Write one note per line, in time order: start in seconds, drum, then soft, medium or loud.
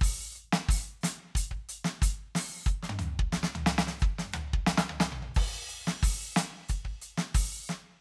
0.01 open hi-hat loud
0.01 kick loud
0.01 hi-hat pedal soft
0.33 closed hi-hat medium
0.33 hi-hat pedal soft
0.53 snare loud
0.69 open hi-hat loud
0.69 kick loud
1.02 closed hi-hat loud
1.02 snare loud
1.02 hi-hat pedal soft
1.36 closed hi-hat loud
1.36 kick loud
1.52 kick medium
1.69 closed hi-hat loud
1.85 snare loud
2.03 closed hi-hat loud
2.03 kick loud
2.36 open hi-hat loud
2.36 snare loud
2.67 kick loud
2.67 hi-hat pedal soft
2.83 snare medium
2.90 high tom loud
3.00 hi-hat pedal medium
3.00 mid tom loud
3.20 kick loud
3.33 snare loud
3.33 hi-hat pedal medium
3.44 snare loud
3.56 mid tom loud
3.67 snare loud
3.79 snare loud
3.88 snare loud
4.00 kick loud
4.00 hi-hat pedal medium
4.19 snare loud
4.26 high tom medium
4.33 hi-hat pedal medium
4.33 mid tom loud
4.54 kick loud
4.67 snare loud
4.67 hi-hat pedal medium
4.78 snare loud
4.90 mid tom medium
5.01 snare loud
5.13 floor tom loud
5.35 kick loud
5.35 hi-hat pedal medium
5.35 crash loud
5.69 closed hi-hat medium
5.88 snare loud
6.03 open hi-hat loud
6.03 kick loud
6.36 closed hi-hat loud
6.36 snare loud
6.36 hi-hat pedal medium
6.69 closed hi-hat medium
6.69 kick medium
6.85 kick medium
6.91 crash soft
7.02 closed hi-hat medium
7.18 snare loud
7.35 open hi-hat loud
7.35 kick loud
7.58 snare soft
7.68 snare loud
7.68 hi-hat pedal soft